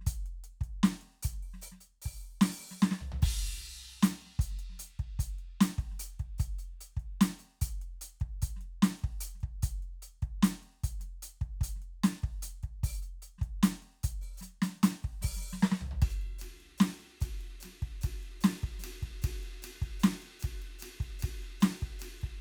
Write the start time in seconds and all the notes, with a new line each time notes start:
0.01 snare
0.07 closed hi-hat, kick
0.26 closed hi-hat
0.44 closed hi-hat
0.61 kick, closed hi-hat
0.83 closed hi-hat, snare
1.01 closed hi-hat
1.14 snare
1.23 closed hi-hat, kick
1.33 snare
1.43 open hi-hat
1.54 snare
1.62 open hi-hat, hi-hat pedal
1.72 snare
1.81 closed hi-hat
2.02 open hi-hat, kick
2.21 open hi-hat
2.41 open hi-hat, snare
2.60 open hi-hat
2.71 snare
2.80 snare, hi-hat pedal
2.91 snare
3.01 floor tom
3.12 floor tom
3.22 kick, crash
3.66 open hi-hat
4.02 closed hi-hat, snare, hi-hat pedal
4.21 closed hi-hat
4.26 snare
4.39 closed hi-hat, kick
4.51 snare
4.56 snare, closed hi-hat
4.70 snare
4.72 snare
4.77 snare
4.79 closed hi-hat, snare
4.82 snare
4.99 kick, closed hi-hat
5.19 closed hi-hat, kick
5.39 closed hi-hat
5.61 closed hi-hat, snare
5.78 kick, open hi-hat
5.91 snare
6.00 closed hi-hat
6.20 kick, closed hi-hat
6.38 closed hi-hat, kick, hi-hat pedal
6.59 closed hi-hat
6.81 closed hi-hat
6.97 kick, closed hi-hat
7.21 closed hi-hat, snare
7.39 closed hi-hat
7.62 closed hi-hat, kick
7.82 closed hi-hat
8.01 closed hi-hat
8.20 kick, closed hi-hat
8.42 closed hi-hat, kick
8.56 snare
8.61 closed hi-hat
8.83 closed hi-hat, snare
8.99 closed hi-hat
9.04 kick
9.21 closed hi-hat
9.35 snare
9.41 kick, closed hi-hat
9.63 closed hi-hat, kick
9.83 closed hi-hat
10.02 closed hi-hat
10.22 kick, closed hi-hat
10.43 closed hi-hat, snare
10.63 closed hi-hat
10.84 closed hi-hat, kick
11.00 snare, closed hi-hat
11.23 closed hi-hat
11.41 kick, closed hi-hat
11.61 closed hi-hat, kick
11.76 snare
11.82 closed hi-hat
12.04 closed hi-hat, snare
12.23 kick, closed hi-hat
12.43 closed hi-hat, snare
12.63 kick, closed hi-hat
12.84 open hi-hat, kick
12.96 hi-hat pedal
13.02 closed hi-hat
13.22 closed hi-hat
13.38 kick, snare
13.43 closed hi-hat
13.63 closed hi-hat, snare
13.83 closed hi-hat
14.04 closed hi-hat, kick
14.22 open hi-hat, snare
14.38 snare, hi-hat pedal
14.43 closed hi-hat
14.62 closed hi-hat, snare
14.83 open hi-hat, snare
15.03 kick, open hi-hat
15.22 open hi-hat, kick, snare
15.36 snare
15.41 open hi-hat
15.53 snare
15.63 snare, hi-hat pedal
15.72 snare
15.81 floor tom
15.87 kick
15.91 floor tom
16.02 kick, ride bell
16.10 hi-hat pedal
16.21 ride
16.39 hi-hat pedal, ride
16.61 ride
16.78 snare, hi-hat pedal, ride
17.01 ride
17.21 kick, hi-hat pedal, ride
17.41 ride
17.60 hi-hat pedal, ride
17.65 snare
17.82 kick, ride
18.01 kick, hi-hat pedal, ride
18.23 ride
18.41 snare, hi-hat pedal, ride
18.63 kick, ride
18.79 snare, hi-hat pedal
18.84 ride
19.03 kick, snare, ride
19.22 kick, hi-hat pedal, ride
19.43 ride
19.62 hi-hat pedal, ride
19.82 kick, ride
20.00 snare, hi-hat pedal
20.04 ride
20.22 ride
20.40 hi-hat pedal, ride
20.44 kick
20.62 ride
20.79 hi-hat pedal, ride
21.00 kick, ride
21.19 hi-hat pedal, ride
21.24 kick
21.43 ride
21.61 snare, hi-hat pedal, ride
21.82 kick, ride
21.92 kick
21.99 hi-hat pedal, ride
22.22 kick, ride